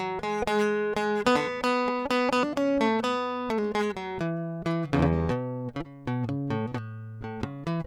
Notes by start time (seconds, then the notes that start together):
0.01 F#3
0.25 G#3
0.49 G#3
0.98 G#3
1.28 B3
1.37 D3 B3
1.66 B3
2.12 B3
2.34 B3
2.45 D4
2.59 C#4
2.82 A3
3.05 B3
3.51 A3
3.60 G#3
3.77 G#3
3.98 F#3
4.21 E3
4.67 E3
4.95 E2 C#3
5.05 C#3
5.31 B2
5.78 D3
6.09 B2
6.30 C#3
6.52 A2
6.76 A2
7.24 A2
7.45 C#3
7.68 E3